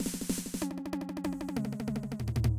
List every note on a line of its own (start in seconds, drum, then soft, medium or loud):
0.00 snare medium
0.06 snare medium
0.14 snare medium
0.21 snare medium
0.30 snare medium
0.38 snare medium
0.46 snare medium
0.54 snare medium
0.62 high tom loud
0.71 high tom medium
0.78 high tom medium
0.86 high tom medium
0.93 high tom loud
1.01 high tom medium
1.09 high tom medium
1.17 high tom medium
1.24 kick soft
1.24 crash medium
1.24 high tom loud
1.33 high tom medium
1.41 high tom medium
1.49 high tom loud
1.57 mid tom loud
1.65 mid tom medium
1.73 mid tom medium
1.80 mid tom loud
1.88 kick soft
1.88 mid tom loud
1.96 mid tom loud
2.03 mid tom medium
2.12 mid tom loud
2.20 floor tom medium
2.28 floor tom medium
2.36 floor tom loud
2.44 floor tom loud